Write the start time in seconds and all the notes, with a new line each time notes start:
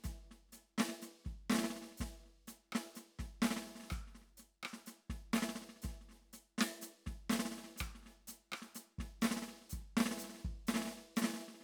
0.01 snare
0.04 kick, snare, hi-hat pedal
0.31 snare
0.49 snare, hi-hat pedal
0.53 snare
0.78 snare
0.80 snare
0.84 snare
0.89 snare
1.02 snare, hi-hat pedal
1.17 snare
1.22 snare
1.25 kick, snare
1.50 snare, hi-hat pedal
1.52 snare
1.55 snare
1.59 snare
1.62 snare
1.64 snare
1.70 snare
1.76 snare
1.82 snare
1.92 snare
1.98 kick, snare, hi-hat pedal
2.01 snare
2.09 snare
2.15 snare
2.24 cross-stick, snare
2.48 snare, hi-hat pedal
2.72 cross-stick, snare
2.95 snare, hi-hat pedal
3.06 snare
3.09 snare
3.19 kick, snare
3.42 snare, hi-hat pedal
3.45 cross-stick, snare
3.51 snare
3.57 snare
3.62 snare
3.67 snare
3.72 snare
3.76 snare
3.80 snare
3.83 snare
3.87 cross-stick, snare, hi-hat pedal
3.92 kick, cross-stick
3.98 kick
4.07 snare
4.15 snare
4.22 snare
4.28 snare
4.37 snare, hi-hat pedal
4.63 cross-stick
4.65 cross-stick
4.73 snare
4.86 snare, hi-hat pedal
5.10 kick, snare
5.33 snare, hi-hat pedal
5.36 cross-stick, snare
5.43 snare
5.49 snare
5.56 snare
5.62 snare
5.69 snare
5.76 snare
5.82 snare, hi-hat pedal
5.84 kick, snare
5.88 snare
5.94 snare
6.01 snare
6.09 snare
6.11 snare
6.16 snare
6.21 snare
6.27 snare
6.33 snare, hi-hat pedal
6.58 snare
6.61 snare
6.82 snare, hi-hat pedal
6.89 snare
7.06 kick, snare
7.30 snare, hi-hat pedal
7.33 snare
7.35 snare
7.40 snare
7.45 snare
7.50 snare
7.55 snare
7.58 snare
7.64 snare
7.68 snare
7.70 snare
7.76 snare, hi-hat pedal
7.81 kick, cross-stick
7.95 snare
8.03 snare
8.06 snare
8.20 snare
8.23 snare
8.28 snare, hi-hat pedal
8.52 cross-stick
8.54 cross-stick
8.62 snare
8.75 snare, hi-hat pedal
8.91 snare
8.99 kick, snare
9.22 snare, hi-hat pedal
9.25 cross-stick, snare
9.31 snare
9.37 snare
9.42 snare
9.48 snare
9.53 snare
9.56 snare
9.62 snare
9.70 snare, hi-hat pedal
9.72 kick, snare
9.75 snare
9.80 snare
9.97 snare
10.01 snare
10.06 snare
10.11 snare
10.14 snare
10.18 snare, hi-hat pedal
10.22 snare
10.24 snare
10.30 snare
10.34 snare
10.45 kick, snare
10.51 kick
10.67 snare, hi-hat pedal
10.74 snare
10.76 snare
10.79 snare
10.82 snare
10.85 snare
10.88 snare
10.91 snare
10.99 snare
11.17 snare, hi-hat pedal
11.22 snare
11.24 snare
11.28 snare
11.30 snare
11.34 snare
11.36 snare
11.40 snare
11.48 snare
11.50 snare
11.55 snare
11.61 snare